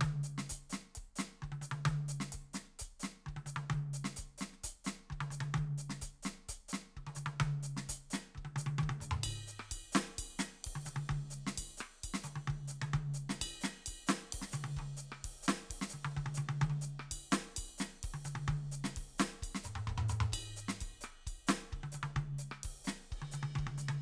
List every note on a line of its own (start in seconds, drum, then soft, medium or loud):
0.01 kick soft
0.01 high tom loud
0.23 hi-hat pedal medium
0.38 snare medium
0.50 closed hi-hat medium
0.50 kick soft
0.70 snare medium
0.70 hi-hat pedal medium
0.95 kick soft
0.95 closed hi-hat medium
1.16 snare medium
1.16 hi-hat pedal medium
1.42 kick soft
1.42 high tom medium
1.52 high tom medium
1.62 hi-hat pedal medium
1.62 high tom medium
1.72 high tom medium
1.85 kick soft
1.85 high tom loud
2.08 hi-hat pedal medium
2.20 snare medium
2.32 kick soft
2.32 closed hi-hat medium
2.54 snare medium
2.54 hi-hat pedal medium
2.64 snare soft
2.79 closed hi-hat medium
2.79 kick soft
3.00 snare medium
3.00 hi-hat pedal medium
3.26 kick soft
3.26 high tom medium
3.37 high tom medium
3.46 hi-hat pedal medium
3.46 high tom medium
3.56 high tom medium
3.70 kick soft
3.70 high tom loud
3.77 kick soft
3.93 hi-hat pedal medium
4.05 snare medium
4.16 closed hi-hat medium
4.16 kick soft
4.38 snare medium
4.38 hi-hat pedal medium
4.52 snare soft
4.64 closed hi-hat loud
4.64 kick soft
4.85 snare medium
4.85 hi-hat pedal medium
5.10 kick soft
5.10 high tom medium
5.21 high tom medium
5.31 hi-hat pedal medium
5.31 high tom medium
5.41 high tom medium
5.54 kick soft
5.54 high tom loud
5.78 hi-hat pedal medium
5.90 snare medium
6.02 closed hi-hat medium
6.02 kick soft
6.23 snare medium
6.23 hi-hat pedal medium
6.49 closed hi-hat medium
6.49 kick soft
6.69 hi-hat pedal medium
6.73 snare medium
6.97 kick soft
6.97 high tom soft
7.07 high tom medium
7.15 hi-hat pedal medium
7.15 high tom medium
7.26 high tom medium
7.40 kick soft
7.40 high tom loud
7.63 hi-hat pedal medium
7.77 snare medium
7.87 closed hi-hat loud
7.87 kick soft
7.87 snare soft
8.10 snare medium
8.10 hi-hat pedal medium
8.35 kick soft
8.35 high tom soft
8.56 hi-hat pedal medium
8.56 high tom medium
8.66 high tom loud
8.78 high tom loud
8.83 kick soft
8.89 high tom loud
9.01 hi-hat pedal medium
9.01 mid tom medium
9.11 mid tom medium
9.24 kick soft
9.24 ride bell loud
9.44 hi-hat pedal medium
9.44 ride soft
9.60 cross-stick medium
9.71 kick soft
9.71 ride bell medium
9.92 snare loud
9.92 hi-hat pedal medium
10.18 kick soft
10.18 ride bell medium
10.39 snare medium
10.39 hi-hat pedal medium
10.64 kick soft
10.64 ride loud
10.75 high tom medium
10.85 hi-hat pedal medium
10.85 high tom medium
10.96 high tom medium
11.09 kick soft
11.09 high tom loud
11.30 hi-hat pedal medium
11.47 snare medium
11.58 kick soft
11.58 ride bell loud
11.77 cross-stick medium
11.77 hi-hat pedal medium
12.04 kick soft
12.04 ride bell medium
12.14 snare medium
12.24 hi-hat pedal medium
12.24 high tom medium
12.36 high tom medium
12.48 kick soft
12.48 high tom loud
12.68 hi-hat pedal medium
12.68 high tom soft
12.82 high tom medium
12.94 kick soft
12.94 high tom loud
13.14 hi-hat pedal medium
13.30 snare medium
13.41 kick soft
13.41 ride bell loud
13.61 snare medium
13.61 hi-hat pedal medium
13.86 kick soft
13.86 ride bell medium
13.92 kick soft
14.07 snare medium
14.07 hi-hat pedal medium
14.33 kick soft
14.33 ride loud
14.42 snare medium
14.52 hi-hat pedal medium
14.52 high tom medium
14.64 high tom medium
14.77 kick soft
14.77 high tom soft
14.77 high tom medium
14.97 hi-hat pedal medium
15.12 cross-stick medium
15.24 kick soft
15.24 ride medium
15.43 hi-hat pedal medium
15.48 snare medium
15.70 kick soft
15.70 ride medium
15.81 snare medium
15.89 hi-hat pedal medium
15.94 high tom medium
16.05 high tom medium
16.17 kick soft
16.17 high tom medium
16.26 high tom medium
16.34 hi-hat pedal medium
16.34 high tom medium
16.49 high tom loud
16.62 kick soft
16.62 high tom loud
16.70 high tom soft
16.81 hi-hat pedal medium
17.00 cross-stick medium
17.11 kick soft
17.11 ride bell medium
17.31 snare medium
17.31 hi-hat pedal medium
17.57 kick soft
17.57 ride bell medium
17.78 snare medium
17.78 hi-hat pedal medium
18.03 kick soft
18.03 ride medium
18.14 high tom medium
18.25 hi-hat pedal medium
18.25 high tom medium
18.35 high tom medium
18.48 kick soft
18.48 high tom loud
18.72 hi-hat pedal medium
18.84 snare medium
18.96 kick soft
18.96 ride medium
19.18 snare medium
19.18 hi-hat pedal medium
19.42 kick soft
19.42 ride bell medium
19.55 snare medium
19.64 hi-hat pedal medium
19.64 mid tom medium
19.75 mid tom medium
19.87 kick soft
19.87 mid tom loud
19.98 mid tom loud
20.09 hi-hat pedal medium
20.09 mid tom loud
20.20 mid tom loud
20.32 kick soft
20.32 ride bell loud
20.57 hi-hat pedal medium
20.68 snare medium
20.81 kick soft
20.81 ride bell medium
20.87 kick soft
21.01 cross-stick medium
21.01 hi-hat pedal medium
21.27 kick soft
21.27 ride bell medium
21.47 snare loud
21.47 hi-hat pedal medium
21.72 kick soft
21.72 high tom soft
21.83 high tom medium
21.92 hi-hat pedal medium
21.92 high tom medium
22.03 high tom medium
22.16 kick soft
22.16 high tom loud
22.38 hi-hat pedal medium
22.51 cross-stick medium
22.63 kick soft
22.63 ride medium
22.84 snare medium
22.84 hi-hat pedal medium
23.12 kick soft
23.12 ride soft
23.22 high tom medium
23.32 hi-hat pedal medium
23.32 high tom medium
23.43 high tom medium
23.55 kick soft
23.55 high tom loud
23.67 high tom medium
23.78 hi-hat pedal medium
23.78 high tom medium
23.89 high tom medium